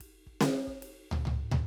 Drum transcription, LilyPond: \new DrumStaff \drummode { \time 4/4 \tempo 4 = 144 \tuplet 3/2 { <bd cymr>8 r8 bd8 <sn cymr>8 r8 bd8 cymr8 r8 <tomfh tommh>8 <tomfh tommh>8 r8 <tommh tomfh>8 } | }